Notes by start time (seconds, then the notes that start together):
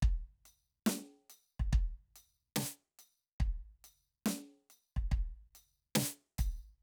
0.03 kick, crash, ride
0.46 closed hi-hat
0.87 snare
1.30 closed hi-hat
1.60 kick
1.73 kick
1.79 ride
2.16 closed hi-hat
2.56 snare
2.99 closed hi-hat
3.41 kick
3.45 crash
3.85 closed hi-hat
4.26 snare
4.71 closed hi-hat
4.97 kick
5.12 kick, crash
5.16 ride
5.56 closed hi-hat
5.96 snare
6.39 kick, closed hi-hat